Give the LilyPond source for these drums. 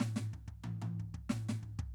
\new DrumStaff \drummode { \time 4/4 \tempo 4 = 122 \tuplet 3/2 { <tomfh sn>8 <sn tomfh>8 bd8 bd8 <tommh tomfh>8 <tommh tomfh>8 bd8 bd8 <sn tomfh>8 <sn tomfh>8 bd8 bd8 } | }